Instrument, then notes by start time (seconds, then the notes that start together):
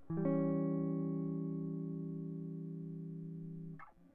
electric guitar
0.11 E3
0.17 G3
0.25 C#4